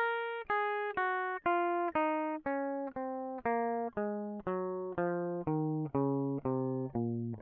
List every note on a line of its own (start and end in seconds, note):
0.00 0.45 A#4
0.51 0.96 G#4
0.98 1.41 F#4
1.47 1.93 F4
1.96 2.42 D#4
2.47 2.93 C#4
2.97 3.42 C4
3.47 3.92 A#3
3.98 4.44 G#3
4.48 4.96 F#3
4.99 5.46 F3
5.49 5.91 D#3
5.96 6.43 C#3
6.47 6.91 C3
6.97 7.39 A#2